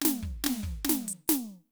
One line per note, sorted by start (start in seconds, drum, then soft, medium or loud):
0.02 snare medium
0.05 snare loud
0.23 kick soft
0.44 snare medium
0.46 snare loud
0.63 kick soft
0.85 snare medium
0.89 snare loud
1.08 closed hi-hat loud
1.28 snare loud
1.28 hi-hat pedal loud